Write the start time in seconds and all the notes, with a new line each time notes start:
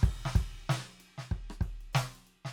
0.04 kick, crash
0.26 snare
0.36 kick, ride bell
0.70 snare, hi-hat pedal
1.01 ride bell
1.18 snare
1.32 kick
1.51 cross-stick
1.61 kick, ride bell
1.81 ride bell
1.93 snare, hi-hat pedal
2.16 ride bell
2.27 ride bell
2.45 snare